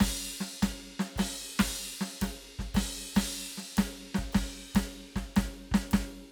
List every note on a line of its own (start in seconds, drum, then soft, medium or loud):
0.01 kick medium
0.01 snare loud
0.01 crash loud
0.41 snare medium
0.63 kick soft
0.63 snare loud
0.63 ride bell loud
1.00 snare loud
1.17 kick soft
1.17 snare loud
1.17 crash loud
1.60 kick soft
1.60 snare loud
1.60 crash loud
2.01 snare medium
2.22 kick soft
2.22 snare loud
2.22 ride loud
2.60 kick soft
2.60 snare medium
2.75 kick medium
2.75 snare loud
2.75 crash loud
3.16 kick soft
3.16 snare loud
3.16 crash loud
3.58 snare medium
3.78 kick soft
3.78 snare loud
3.78 ride loud
4.15 kick soft
4.15 snare loud
4.33 kick medium
4.33 snare loud
4.33 crash medium
4.75 kick medium
4.75 snare loud
4.75 ride loud
5.16 kick soft
5.16 snare medium
5.37 kick medium
5.37 snare loud
5.37 ride medium
5.72 kick medium
5.72 snare loud
5.92 kick medium
5.92 snare loud
5.92 ride medium